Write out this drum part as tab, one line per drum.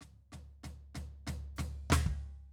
Hi-hat    |----------p-----|
Snare     |o-o-o-o-o-o-o---|
Floor tom |o-o-o-o-o-o-o---|
Kick      |-------------o--|